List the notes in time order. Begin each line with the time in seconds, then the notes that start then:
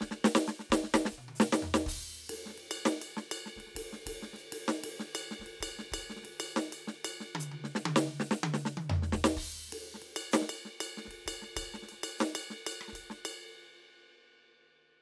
0.01 kick, snare
0.11 snare
0.25 snare
0.35 snare
0.46 snare, hi-hat pedal
0.60 snare
0.70 kick, snare
0.84 snare
0.94 kick, snare
1.06 snare
1.12 kick, hi-hat pedal
1.18 mid tom
1.29 high tom
1.36 hi-hat pedal
1.40 snare
1.53 snare
1.61 floor tom, hi-hat pedal
1.74 snare
1.86 kick, hi-hat pedal, crash
1.94 kick
1.99 kick
2.13 cross-stick
2.30 snare, ride
2.46 snare
2.49 snare
2.58 ride
2.71 ride bell
2.86 snare
3.02 ride bell
3.17 snare
3.32 ride bell
3.36 hi-hat pedal
3.46 snare
3.57 kick, snare, ride
3.67 snare
3.75 kick, hi-hat pedal, ride
3.93 snare
4.06 kick, ride
4.23 snare
4.33 snare, ride
4.38 hi-hat pedal
4.53 ride
4.68 snare
4.84 ride
5.00 snare
5.15 hi-hat pedal, ride bell
5.31 snare
5.40 kick, snare
5.46 ride
5.61 kick, hi-hat pedal, ride bell
5.79 snare
5.92 kick, ride bell
6.10 snare
6.17 snare
6.23 snare, ride
6.29 snare
6.40 ride bell
6.50 hi-hat pedal
6.57 snare
6.73 ride bell
6.88 snare
7.05 hi-hat pedal, ride bell
7.21 snare
7.35 high tom
7.40 hi-hat pedal
7.52 high tom
7.64 snare
7.75 snare
7.86 high tom
7.96 snare
8.08 high tom
8.20 snare
8.31 snare
8.44 high tom
8.54 snare
8.66 snare
8.77 hi-hat pedal, open hi-hat, high tom
8.90 floor tom
9.03 snare
9.07 hi-hat pedal
9.13 kick, snare
9.24 snare
9.33 hi-hat pedal
9.37 kick, crash
9.43 kick
9.57 cross-stick
9.64 cross-stick
9.68 snare
9.73 ride
9.94 snare
10.02 ride
10.17 ride bell
10.32 snare, hi-hat pedal
10.42 snare
10.50 ride bell
10.65 snare
10.81 hi-hat pedal, ride bell
10.97 snare
11.05 kick, snare
11.11 ride
11.26 kick, hi-hat pedal, ride bell
11.42 snare
11.57 kick, ride bell
11.74 snare
11.83 snare
11.89 snare, ride bell
12.04 ride bell
12.19 snare, hi-hat pedal
12.35 ride bell
12.50 snare
12.67 hi-hat pedal, ride bell
12.81 cross-stick
12.88 snare
12.93 kick, ride bell
13.10 snare
13.25 ride bell